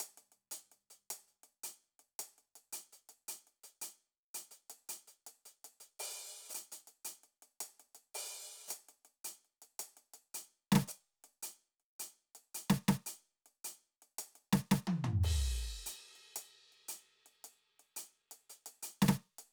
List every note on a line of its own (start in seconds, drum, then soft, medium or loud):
0.00 closed hi-hat loud
0.17 closed hi-hat soft
0.32 closed hi-hat soft
0.51 closed hi-hat loud
0.72 closed hi-hat soft
0.90 closed hi-hat soft
1.10 closed hi-hat loud
1.28 closed hi-hat soft
1.43 closed hi-hat soft
1.63 closed hi-hat loud
1.84 closed hi-hat soft
1.99 closed hi-hat soft
2.19 closed hi-hat loud
2.38 closed hi-hat soft
2.55 closed hi-hat medium
2.73 closed hi-hat loud
2.92 closed hi-hat soft
3.09 closed hi-hat medium
3.28 closed hi-hat loud
3.47 closed hi-hat soft
3.64 closed hi-hat medium
3.81 closed hi-hat loud
4.34 closed hi-hat loud
4.51 closed hi-hat medium
4.70 closed hi-hat medium
4.89 closed hi-hat loud
5.07 closed hi-hat medium
5.27 closed hi-hat medium
5.45 closed hi-hat medium
5.64 closed hi-hat medium
5.80 closed hi-hat medium
5.99 open hi-hat loud
6.50 hi-hat pedal loud
6.54 closed hi-hat loud
6.72 closed hi-hat medium
6.87 closed hi-hat medium
7.05 closed hi-hat loud
7.23 closed hi-hat soft
7.42 closed hi-hat soft
7.60 closed hi-hat loud
7.80 closed hi-hat soft
7.95 closed hi-hat medium
8.14 open hi-hat loud
8.68 closed hi-hat loud
8.68 hi-hat pedal loud
8.89 closed hi-hat soft
9.05 closed hi-hat soft
9.24 closed hi-hat loud
9.45 closed hi-hat soft
9.62 closed hi-hat medium
9.79 closed hi-hat loud
9.97 closed hi-hat soft
10.14 closed hi-hat medium
10.34 open hi-hat loud
10.72 snare loud
10.75 snare loud
10.88 hi-hat pedal loud
11.24 closed hi-hat soft
11.43 closed hi-hat loud
11.80 closed hi-hat soft
12.00 closed hi-hat loud
12.35 closed hi-hat medium
12.55 closed hi-hat loud
12.70 snare loud
12.88 snare loud
13.06 closed hi-hat loud
13.46 closed hi-hat soft
13.64 closed hi-hat loud
14.02 closed hi-hat soft
14.18 closed hi-hat loud
14.35 closed hi-hat soft
14.53 snare loud
14.71 snare loud
14.87 high tom loud
15.04 mid tom loud
15.24 crash medium
15.24 crash loud
15.86 closed hi-hat loud
16.15 closed hi-hat soft
16.36 closed hi-hat loud
16.72 closed hi-hat soft
16.88 closed hi-hat loud
17.26 closed hi-hat soft
17.44 closed hi-hat medium
17.79 closed hi-hat soft
17.96 closed hi-hat loud
18.14 closed hi-hat soft
18.31 closed hi-hat medium
18.50 closed hi-hat medium
18.66 closed hi-hat medium
18.83 closed hi-hat loud
19.02 snare loud
19.08 snare loud
19.38 closed hi-hat medium